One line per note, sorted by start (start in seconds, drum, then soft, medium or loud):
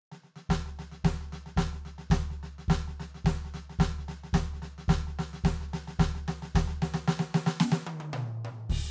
0.12 snare soft
0.24 snare soft
0.36 snare soft
0.50 kick medium
0.50 snare loud
0.66 snare soft
0.79 snare medium
0.92 snare soft
1.05 kick medium
1.05 snare loud
1.21 snare soft
1.33 snare medium
1.46 snare soft
1.57 kick medium
1.57 snare loud
1.73 snare soft
1.86 snare soft
1.99 snare soft
2.11 kick loud
2.11 snare loud
2.31 snare soft
2.43 snare soft
2.59 snare soft
2.69 kick loud
2.69 snare loud
2.88 snare soft
3.00 snare medium
3.15 snare soft
3.25 kick medium
3.25 snare loud
3.45 snare soft
3.54 snare medium
3.70 snare soft
3.79 kick loud
3.79 snare loud
3.99 snare soft
4.09 snare medium
4.24 snare soft
4.34 kick loud
4.34 snare loud
4.54 snare soft
4.62 snare medium
4.79 snare soft
4.89 kick loud
4.89 snare loud
5.07 snare soft
5.19 snare medium
5.34 snare medium
5.44 kick loud
5.44 snare loud
5.61 snare soft
5.74 snare medium
5.88 snare medium
6.00 kick loud
6.00 snare loud
6.15 snare soft
6.28 snare medium
6.43 snare medium
6.55 kick loud
6.55 snare loud
6.68 snare medium
6.82 snare loud
6.94 snare medium
7.08 snare loud
7.20 snare loud
7.35 snare loud
7.47 snare loud
7.61 snare loud
7.72 snare loud
7.87 high tom loud
8.01 high tom loud
8.14 mid tom loud
8.45 mid tom medium
8.70 kick loud
8.70 crash medium